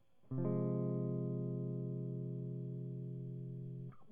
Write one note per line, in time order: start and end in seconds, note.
0.33 3.94 C3
0.39 3.93 F3
0.45 3.91 G#3